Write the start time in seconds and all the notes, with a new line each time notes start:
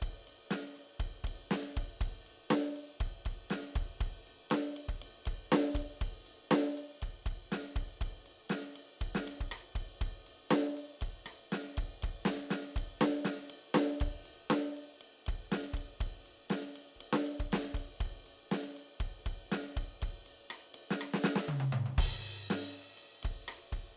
0.02 kick, ride
0.27 ride
0.50 snare, ride
0.76 ride
0.99 kick, ride
1.24 kick, ride
1.51 snare, ride
1.76 kick, ride
2.01 kick, ride
2.26 ride
2.50 snare, ride
2.76 ride
3.00 kick, ride
3.25 kick, ride
3.50 snare, ride
3.75 kick, ride
4.00 kick, ride
4.27 ride
4.50 snare, ride
4.76 ride
4.88 kick
5.01 ride
5.25 kick, ride
5.52 snare, ride
5.74 kick, ride
6.01 kick, ride
6.26 ride
6.51 snare, ride
6.77 ride
7.02 kick, ride
7.26 kick, ride
7.52 snare, ride
7.76 kick, ride
8.01 kick, ride
8.26 ride
8.49 snare, ride
8.76 ride
9.01 kick, ride
9.15 snare
9.27 ride
9.40 kick
9.51 cross-stick, ride
9.75 kick, ride
10.01 kick, ride
10.26 ride
10.50 snare, ride
10.77 ride
11.01 kick, ride
11.26 cross-stick, ride
11.52 snare, ride
11.77 kick, ride
12.02 kick, ride
12.25 snare, ride
12.50 snare, ride
12.76 kick, ride
13.01 snare, ride
13.24 snare, ride
13.50 ride
13.74 snare, ride
14.00 kick, ride
14.25 ride
14.50 snare, ride
14.77 ride
15.01 ride
15.26 kick, ride
15.51 snare, ride
15.73 kick, ride
16.00 kick, ride
16.26 ride
16.50 snare, ride
16.76 ride
16.96 kick
17.00 ride
17.12 snare
17.26 ride
17.39 kick
17.52 snare, ride
17.74 kick, ride
18.00 kick, ride
18.05 kick
18.26 ride
18.51 snare, ride
18.76 ride
19.00 kick, ride
19.26 kick, ride
19.51 snare, ride
19.76 kick, ride
20.02 kick, ride
20.26 ride
20.50 cross-stick, ride
20.74 ride
20.90 snare
21.01 cross-stick
21.13 snare
21.24 snare
21.35 snare
21.48 high tom
21.60 high tom
21.72 mid tom
21.86 mid tom
21.98 kick, ride, crash
22.24 ride
22.50 snare, ride
22.75 ride
22.97 ride
23.23 kick, ride
23.48 cross-stick, ride
23.72 kick, ride